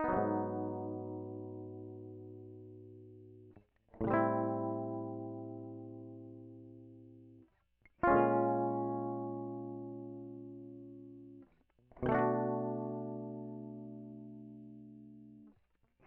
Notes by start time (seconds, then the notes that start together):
0.00 D#4
0.05 B3
0.10 F#3
0.15 G#2 C3
4.03 A2 C#3
4.08 G3 C4
4.14 E4
8.04 F4
8.08 G#3 C#4
8.14 A#2 D3
12.05 B2 D#3
12.10 A3 D4
12.15 F#4